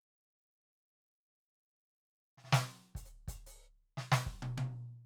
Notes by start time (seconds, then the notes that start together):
2.37 snare
2.44 snare
2.47 snare
2.52 snare
2.95 open hi-hat, kick
3.05 hi-hat pedal
3.28 open hi-hat, kick
3.46 hi-hat pedal
3.97 snare
4.12 snare
4.26 kick
4.42 closed hi-hat, high tom
4.58 closed hi-hat, high tom